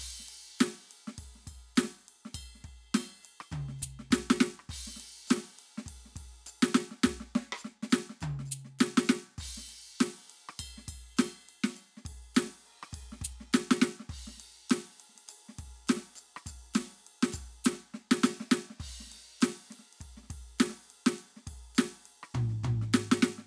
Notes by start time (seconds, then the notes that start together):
0.01 kick
0.04 kick
0.20 snare
0.29 ride
0.60 snare, ride, percussion
0.71 snare
0.92 ride
1.08 snare
1.14 percussion
1.19 kick, ride
1.24 kick
1.36 snare
1.40 snare
1.44 kick, snare
1.48 ride bell
1.54 kick
1.56 kick
1.76 snare, ride bell, percussion
1.84 snare
2.04 percussion
2.09 ride
2.26 snare
2.34 kick, ride bell, percussion
2.41 kick
2.55 snare
2.61 kick, snare
2.65 ride
2.95 snare, ride bell, percussion
3.23 ride, percussion
3.41 cross-stick
3.51 kick, mid tom, percussion
3.58 kick
3.61 kick
3.69 snare
3.80 kick, percussion, floor tom
4.00 snare
4.11 kick, snare, percussion
4.31 snare
4.41 snare
4.60 cross-stick
4.70 kick, crash
4.76 kick
4.79 kick
4.87 snare
4.97 snare, ride
5.28 snare, ride, percussion
5.37 snare
5.59 ride
5.78 snare
5.86 kick, ride, percussion
6.06 snare
6.12 kick, snare
6.17 ride
6.23 kick
6.25 kick
6.47 ride, percussion
6.63 snare
6.75 snare, percussion
6.92 snare
7.04 kick, snare, percussion
7.21 snare
7.30 percussion
7.36 snare
7.53 high tom
7.59 percussion
7.65 snare
7.83 snare
7.91 snare, percussion
8.10 snare
8.21 kick, mid tom, percussion
8.28 kick
8.31 kick
8.40 snare
8.46 percussion
8.52 floor tom
8.65 snare
8.80 snare, percussion
8.98 snare
9.06 percussion
9.10 snare
9.39 kick, percussion, crash
9.45 kick
9.49 kick
9.58 snare
9.63 snare
9.70 snare, ride
10.00 snare, ride, percussion
10.30 ride
10.49 cross-stick
10.58 kick, ride bell, percussion
10.78 snare
10.88 kick, ride bell
10.95 kick
10.98 kick
11.18 snare, ride bell, percussion
11.49 ride
11.64 snare
11.76 ride, percussion
11.98 snare
12.06 kick, ride
12.12 kick
12.15 kick
12.35 snare, ride, percussion
12.46 snare
12.66 ride
12.83 cross-stick
12.92 kick, ride, percussion
13.00 kick
13.03 kick
13.13 snare
13.22 kick, floor tom
13.31 kick
13.41 snare
13.54 snare, percussion
13.71 snare
13.82 snare
14.00 snare
14.10 kick, crash
14.20 kick
14.27 snare
14.36 cross-stick, snare
14.41 ride
14.70 snare, ride, percussion
14.98 ride, percussion
15.10 snare
15.16 snare, ride
15.20 snare
15.29 ride, percussion
15.49 snare
15.56 kick, snare, ride
15.65 kick
15.68 kick
15.88 snare, ride, percussion
15.97 snare
16.16 ride, percussion
16.37 cross-stick
16.47 kick, snare, ride, percussion
16.56 kick
16.75 kick, snare, ride, percussion
17.07 ride
17.23 snare
17.33 kick, ride, percussion
17.41 kick
17.45 kick
17.65 snare, floor tom
17.73 snare
17.94 snare
18.12 snare
18.24 snare, percussion
18.33 snare
18.41 snare
18.52 snare
18.70 snare
18.80 kick, crash
18.87 kick
19.00 snare
19.07 snare
19.11 snare, ride
19.15 snare
19.41 snare, ride, percussion
19.71 snare, ride
19.79 snare
19.93 ride
19.99 kick, ride, percussion
20.18 snare
20.24 snare
20.31 kick, ride
20.37 kick
20.59 snare, ride, percussion
20.70 snare
20.91 ride
21.07 snare
21.17 ride, percussion
21.37 snare
21.47 kick, ride
21.54 kick
21.57 kick
21.76 snare, ride, percussion
22.03 ride, percussion
22.24 cross-stick
22.31 percussion
22.35 kick, floor tom
22.41 kick
22.50 snare
22.64 kick, floor tom
22.72 kick
22.82 snare
22.94 snare, percussion
23.12 snare
23.20 snare, percussion
23.39 snare